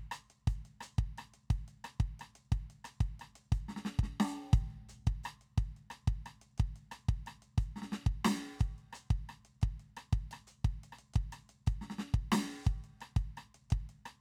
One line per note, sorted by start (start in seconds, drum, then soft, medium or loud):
0.12 closed hi-hat medium
0.12 cross-stick medium
0.31 closed hi-hat soft
0.48 closed hi-hat medium
0.48 kick medium
0.66 closed hi-hat soft
0.81 closed hi-hat medium
0.81 cross-stick medium
0.99 kick medium
0.99 closed hi-hat soft
1.18 cross-stick medium
1.18 closed hi-hat soft
1.34 closed hi-hat soft
1.51 kick medium
1.51 closed hi-hat medium
1.68 closed hi-hat soft
1.85 cross-stick medium
1.85 closed hi-hat soft
2.00 kick medium
2.00 closed hi-hat soft
2.20 cross-stick medium
2.20 closed hi-hat soft
2.36 closed hi-hat soft
2.52 kick medium
2.52 closed hi-hat soft
2.71 closed hi-hat soft
2.85 cross-stick medium
2.85 closed hi-hat medium
3.01 kick medium
3.01 closed hi-hat soft
3.20 cross-stick medium
3.20 closed hi-hat soft
3.36 closed hi-hat soft
3.53 closed hi-hat medium
3.53 kick medium
3.69 snare soft
3.77 snare soft
3.86 snare medium
3.99 kick medium
4.04 snare soft
4.21 snare loud
4.37 snare soft
4.54 closed hi-hat medium
4.54 kick loud
4.71 closed hi-hat soft
4.89 closed hi-hat medium
5.07 kick medium
5.07 closed hi-hat soft
5.24 closed hi-hat medium
5.24 cross-stick medium
5.42 closed hi-hat soft
5.58 kick medium
5.58 closed hi-hat soft
5.77 closed hi-hat soft
5.91 cross-stick medium
5.91 closed hi-hat soft
6.08 kick medium
6.08 closed hi-hat soft
6.26 cross-stick medium
6.26 closed hi-hat soft
6.42 closed hi-hat soft
6.58 kick medium
6.58 closed hi-hat soft
6.76 closed hi-hat soft
6.92 cross-stick medium
6.92 closed hi-hat medium
7.09 kick medium
7.09 closed hi-hat soft
7.27 cross-stick medium
7.27 closed hi-hat soft
7.43 closed hi-hat soft
7.58 closed hi-hat medium
7.58 kick medium
7.77 snare soft
7.83 snare soft
7.93 snare medium
8.07 kick medium
8.25 open hi-hat medium
8.25 snare loud
8.60 kick medium
8.60 closed hi-hat soft
8.60 hi-hat pedal soft
8.79 closed hi-hat soft
8.93 closed hi-hat medium
8.93 cross-stick medium
9.11 kick medium
9.11 closed hi-hat soft
9.30 cross-stick medium
9.30 closed hi-hat soft
9.45 closed hi-hat soft
9.62 kick medium
9.62 closed hi-hat soft
9.80 closed hi-hat soft
9.97 cross-stick medium
9.97 closed hi-hat soft
10.13 kick medium
10.13 closed hi-hat soft
10.32 cross-stick medium
10.32 closed hi-hat medium
10.48 closed hi-hat soft
10.65 kick medium
10.65 closed hi-hat soft
10.84 closed hi-hat soft
10.93 cross-stick soft
10.99 closed hi-hat soft
11.14 kick medium
11.14 closed hi-hat soft
11.33 cross-stick medium
11.33 closed hi-hat medium
11.50 closed hi-hat soft
11.67 closed hi-hat medium
11.67 kick medium
11.82 snare soft
11.91 snare soft
11.99 snare medium
12.14 kick medium
12.32 open hi-hat medium
12.32 snare loud
12.65 kick medium
12.65 hi-hat pedal soft
12.69 closed hi-hat soft
12.84 closed hi-hat soft
13.01 cross-stick medium
13.01 closed hi-hat soft
13.17 kick medium
13.17 closed hi-hat soft
13.38 cross-stick medium
13.38 closed hi-hat soft
13.55 closed hi-hat soft
13.71 kick medium
13.71 closed hi-hat soft
13.90 closed hi-hat soft
14.06 cross-stick medium
14.06 closed hi-hat soft